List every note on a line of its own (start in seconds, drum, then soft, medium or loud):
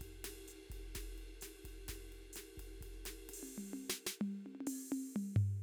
0.01 kick soft
0.01 hi-hat pedal soft
0.01 ride soft
0.25 snare soft
0.25 ride medium
0.48 hi-hat pedal medium
0.48 ride soft
0.71 kick soft
0.71 ride soft
0.95 kick soft
0.95 snare soft
0.95 ride medium
1.19 ride soft
1.42 snare soft
1.42 hi-hat pedal medium
1.42 ride medium
1.65 kick soft
1.65 ride soft
1.89 kick soft
1.89 snare soft
1.89 ride medium
2.13 ride soft
2.23 snare soft
2.34 snare soft
2.34 hi-hat pedal medium
2.34 ride medium
2.58 kick soft
2.58 ride soft
2.82 kick soft
2.82 ride soft
2.87 kick soft
2.94 snare soft
3.06 snare soft
3.06 ride medium
3.30 ride medium
3.34 hi-hat pedal medium
3.44 high tom soft
3.58 mid tom medium
3.74 high tom medium
3.90 snare medium
4.07 snare medium
4.22 mid tom loud
4.47 high tom soft
4.56 high tom soft
4.61 high tom medium
4.67 hi-hat pedal loud
4.67 high tom medium
4.93 high tom loud
5.17 mid tom loud
5.37 floor tom loud